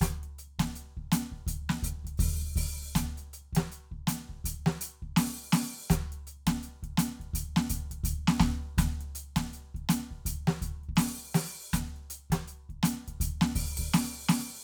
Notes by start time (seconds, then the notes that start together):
0.01 open hi-hat, kick, snare, hi-hat pedal
0.23 closed hi-hat
0.39 closed hi-hat
0.59 kick, snare, closed hi-hat
0.75 closed hi-hat
0.97 kick
1.12 closed hi-hat, snare
1.32 kick
1.47 closed hi-hat, kick
1.69 snare
1.83 open hi-hat, kick
1.87 hi-hat pedal
2.05 kick, closed hi-hat
2.17 open hi-hat, kick, hi-hat pedal
2.56 open hi-hat, kick
2.95 open hi-hat, kick, snare, hi-hat pedal
3.17 closed hi-hat
3.33 closed hi-hat
3.53 kick, snare, closed hi-hat
3.72 closed hi-hat
3.92 kick
4.07 closed hi-hat, snare
4.29 kick
4.45 closed hi-hat, kick
4.66 snare
4.81 closed hi-hat
5.02 kick
5.16 open hi-hat, snare
5.46 kick
5.52 open hi-hat, snare
5.90 open hi-hat, kick, snare, hi-hat pedal
6.12 closed hi-hat
6.27 closed hi-hat
6.47 kick, snare, closed hi-hat
6.63 closed hi-hat
6.83 kick, closed hi-hat
6.98 closed hi-hat, snare
7.20 kick, closed hi-hat
7.34 closed hi-hat, kick
7.56 snare
7.70 closed hi-hat, kick
7.91 kick, closed hi-hat
8.04 closed hi-hat, kick, hi-hat pedal
8.28 snare
8.40 kick, snare
8.78 open hi-hat, kick, snare, hi-hat pedal
9.01 closed hi-hat
9.15 closed hi-hat, kick
9.36 kick, snare, closed hi-hat
9.53 closed hi-hat
9.75 kick, closed hi-hat
9.89 closed hi-hat, snare
10.11 kick
10.26 closed hi-hat, kick
10.47 snare
10.62 closed hi-hat, kick
10.84 closed hi-hat
10.89 kick
10.96 open hi-hat, snare, hi-hat pedal
11.35 open hi-hat, snare
11.73 open hi-hat, kick, snare, hi-hat pedal
11.96 closed hi-hat
12.10 closed hi-hat
12.30 kick, snare, closed hi-hat
12.48 closed hi-hat
12.69 kick, closed hi-hat
12.83 closed hi-hat, snare
13.08 kick, closed hi-hat
13.20 closed hi-hat, kick
13.41 snare
13.55 open hi-hat, kick
13.77 kick, open hi-hat
13.87 kick
13.93 open hi-hat, snare
14.29 open hi-hat, snare